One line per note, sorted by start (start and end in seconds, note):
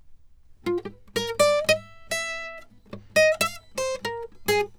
0.67 0.82 F4
0.86 0.98 A4
1.17 1.39 A#4
1.40 1.65 D5
1.70 1.78 D#5
2.12 2.69 E5
3.17 3.37 D#5
3.42 3.60 F5
3.79 3.99 C5
4.06 4.29 A#4
4.49 4.69 G#4